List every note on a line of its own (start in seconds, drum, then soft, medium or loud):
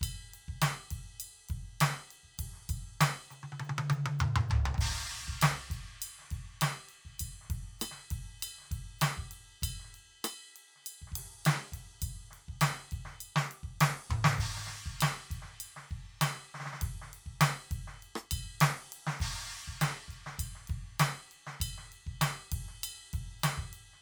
0.01 kick soft
0.01 hi-hat pedal soft
0.01 ride bell loud
0.12 kick soft
0.34 ride medium
0.48 kick soft
0.61 snare loud
0.61 hi-hat pedal soft
0.61 ride bell loud
0.91 kick soft
0.91 ride medium
1.20 hi-hat pedal soft
1.20 ride bell medium
1.49 kick soft
1.49 ride medium
1.57 kick soft
1.80 snare loud
1.80 hi-hat pedal soft
1.80 ride bell loud
1.91 snare soft
2.11 ride soft
2.23 kick soft
2.38 kick soft
2.38 hi-hat pedal medium
2.38 ride loud
2.45 kick soft
2.47 kick soft
2.53 snare soft
2.57 snare soft
2.69 kick medium
2.69 ride bell medium
2.77 kick soft
3.00 snare loud
3.00 hi-hat pedal soft
3.00 ride bell loud
3.31 hi-hat pedal medium
3.31 high tom soft
3.43 high tom medium
3.52 high tom medium
3.60 high tom medium
3.64 hi-hat pedal soft
3.69 high tom loud
3.78 high tom loud
3.90 hi-hat pedal medium
3.90 high tom loud
4.06 high tom loud
4.19 hi-hat pedal medium
4.19 mid tom loud
4.36 mid tom loud
4.48 kick soft
4.48 floor tom loud
4.48 hi-hat pedal soft
4.66 floor tom loud
4.74 kick medium
4.74 hi-hat pedal medium
4.74 floor tom medium
4.81 crash loud
4.90 kick soft
4.92 kick soft
5.28 kick soft
5.41 snare loud
5.41 hi-hat pedal medium
5.41 ride bell loud
5.68 kick soft
5.68 snare soft
5.68 ride medium
5.77 kick soft
6.00 hi-hat pedal soft
6.00 ride bell loud
6.19 snare soft
6.22 snare soft
6.31 kick soft
6.31 cross-stick soft
6.31 ride soft
6.37 kick soft
6.61 snare medium
6.61 hi-hat pedal medium
6.61 ride bell loud
6.89 ride soft
7.05 kick soft
7.18 kick soft
7.18 hi-hat pedal medium
7.18 ride bell medium
7.28 kick soft
7.31 kick soft
7.41 snare soft
7.45 snare soft
7.50 kick medium
7.50 ride medium
7.57 kick soft
7.79 cross-stick medium
7.79 hi-hat pedal medium
7.79 ride bell loud
7.91 snare soft
8.11 kick soft
8.11 ride medium
8.18 kick soft
8.21 kick soft
8.39 hi-hat pedal soft
8.39 ride bell loud
8.58 snare soft
8.62 snare soft
8.65 snare soft
8.71 kick soft
8.71 cross-stick soft
8.71 ride medium
8.78 kick soft
8.99 snare loud
8.99 hi-hat pedal medium
8.99 ride bell loud
9.18 kick soft
9.31 ride medium
9.61 kick soft
9.61 hi-hat pedal soft
9.61 ride bell loud
9.69 kick soft
9.80 snare soft
9.84 snare soft
9.94 ride soft
10.24 cross-stick medium
10.24 hi-hat pedal medium
10.24 ride bell loud
10.56 ride medium
10.76 snare soft
10.85 hi-hat pedal soft
10.85 ride bell medium
11.02 kick soft
11.07 snare soft
11.12 kick soft
11.12 ride loud
11.44 snare loud
11.44 hi-hat pedal soft
11.44 ride bell loud
11.72 kick soft
11.72 snare soft
11.72 ride medium
12.00 kick soft
12.00 hi-hat pedal soft
12.00 ride bell medium
12.08 kick soft
12.31 snare soft
12.31 ride soft
12.48 kick soft
12.60 snare loud
12.60 hi-hat pedal soft
12.60 ride bell loud
12.72 snare soft
12.91 kick soft
12.91 ride soft
12.98 kick soft
13.05 snare soft
13.21 hi-hat pedal soft
13.21 ride bell medium
13.36 snare loud
13.51 ride medium
13.63 kick soft
13.80 snare loud
13.80 hi-hat pedal medium
13.80 ride loud
13.91 snare soft
14.10 kick soft
14.10 mid tom loud
14.24 snare loud
14.30 snare medium
14.37 kick medium
14.37 hi-hat pedal medium
14.37 crash loud
14.46 kick soft
14.57 snare soft
14.67 snare soft
14.86 kick soft
15.01 snare loud
15.01 hi-hat pedal medium
15.01 ride bell loud
15.12 snare soft
15.30 kick soft
15.30 ride medium
15.36 kick soft
15.42 snare soft
15.52 snare soft
15.60 hi-hat pedal soft
15.60 ride bell medium
15.76 snare soft
15.89 kick soft
15.89 ride soft
16.21 snare loud
16.21 hi-hat pedal medium
16.21 ride bell loud
16.35 snare soft
16.54 snare soft
16.60 snare medium
16.66 snare medium
16.73 snare soft
16.81 kick medium
16.81 snare soft
16.81 hi-hat pedal medium
16.81 ride medium
16.93 kick soft
17.02 snare soft
17.05 snare soft
17.13 ride medium
17.26 kick soft
17.41 snare loud
17.41 hi-hat pedal medium
17.41 ride bell loud
17.50 snare soft
17.71 kick soft
17.71 ride medium
17.78 kick soft
17.87 snare soft
18.02 hi-hat pedal soft
18.02 ride soft
18.15 cross-stick medium
18.31 kick soft
18.31 ride bell loud
18.39 kick soft
18.42 kick soft
18.61 snare loud
18.61 hi-hat pedal medium
18.61 ride loud
18.71 snare soft
18.92 ride medium
19.07 snare medium
19.19 kick medium
19.19 hi-hat pedal medium
19.19 crash loud
19.33 kick soft
19.41 snare soft
19.45 snare soft
19.49 snare soft
19.68 kick soft
19.81 snare loud
19.81 hi-hat pedal soft
19.81 ride bell loud
20.08 kick soft
20.08 ride soft
20.26 snare medium
20.39 kick soft
20.39 hi-hat pedal soft
20.39 ride bell medium
20.55 snare soft
20.62 snare soft
20.67 kick soft
20.67 ride soft
20.77 kick soft
20.99 snare loud
20.99 hi-hat pedal soft
20.99 ride bell loud
21.11 snare soft
21.31 ride soft
21.47 snare medium
21.60 kick soft
21.60 hi-hat pedal soft
21.60 ride bell loud
21.67 kick soft
21.78 snare soft
21.83 snare soft
21.87 snare soft
21.92 ride soft
22.07 kick soft
22.21 snare loud
22.21 hi-hat pedal medium
22.21 ride bell loud
22.34 snare soft
22.52 kick soft
22.52 ride loud
22.59 kick soft
22.68 snare soft
22.83 hi-hat pedal soft
22.83 ride bell loud
23.13 kick soft
23.13 ride medium
23.20 kick soft
23.23 kick soft
23.39 snare medium
23.39 hi-hat pedal soft
23.39 ride bell loud
23.55 kick soft
23.55 snare soft
23.63 kick soft
23.73 ride medium
23.93 snare soft